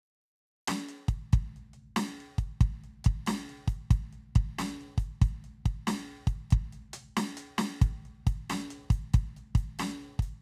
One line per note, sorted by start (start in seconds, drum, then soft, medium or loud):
0.68 snare loud
0.68 closed hi-hat loud
0.88 closed hi-hat medium
1.08 kick medium
1.08 closed hi-hat medium
1.33 kick loud
1.33 closed hi-hat medium
1.56 closed hi-hat soft
1.73 closed hi-hat soft
1.96 snare loud
1.96 closed hi-hat loud
2.20 closed hi-hat soft
2.38 kick medium
2.38 closed hi-hat medium
2.61 kick loud
2.61 closed hi-hat medium
2.84 closed hi-hat soft
3.04 kick loud
3.04 closed hi-hat loud
3.26 snare loud
3.26 closed hi-hat loud
3.49 closed hi-hat soft
3.68 kick medium
3.68 closed hi-hat medium
3.90 kick loud
3.90 closed hi-hat loud
4.13 closed hi-hat soft
4.35 kick loud
4.35 closed hi-hat medium
4.58 snare loud
4.58 closed hi-hat loud
4.81 closed hi-hat soft
4.98 kick medium
4.98 closed hi-hat medium
5.21 closed hi-hat medium
5.21 kick loud
5.44 closed hi-hat soft
5.65 kick medium
5.65 closed hi-hat medium
5.87 snare loud
5.87 closed hi-hat loud
6.27 kick medium
6.27 closed hi-hat medium
6.50 kick loud
6.50 closed hi-hat medium
6.72 closed hi-hat medium
6.93 closed hi-hat loud
7.17 snare loud
7.17 closed hi-hat loud
7.37 closed hi-hat loud
7.58 snare loud
7.58 closed hi-hat loud
7.81 kick loud
7.81 closed hi-hat loud
8.05 closed hi-hat soft
8.27 kick loud
8.27 closed hi-hat loud
8.49 snare loud
8.49 closed hi-hat loud
8.70 closed hi-hat medium
8.90 kick loud
8.90 closed hi-hat loud
9.13 kick loud
9.13 closed hi-hat loud
9.36 closed hi-hat medium
9.55 kick loud
9.55 closed hi-hat loud
9.79 snare loud
9.79 closed hi-hat loud
10.04 closed hi-hat soft
10.19 kick medium
10.19 closed hi-hat loud